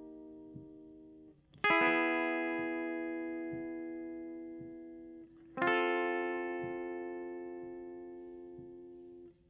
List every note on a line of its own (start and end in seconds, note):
1.64 4.74 G#4
1.70 5.28 E4
1.81 5.25 B3
1.87 2.10 F3
5.57 9.28 C4
5.62 9.33 F4
5.67 8.57 A4